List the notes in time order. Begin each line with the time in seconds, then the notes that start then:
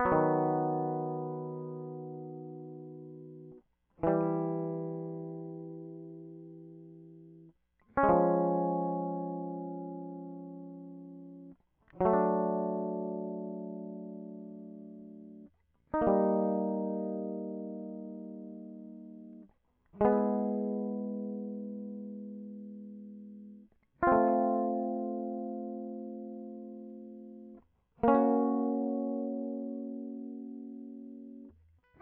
0.00 B3
0.06 F#3
0.13 D#3
4.04 E3 G3
7.98 C#4
8.04 G#3
8.09 F3
12.01 F#3
12.06 A3
12.13 D4
15.94 D#4
16.02 A#3
16.08 G3
20.01 G#3 B3
24.03 F4
24.07 C4
24.12 A3
28.04 A#3
28.08 C#4
28.15 F#4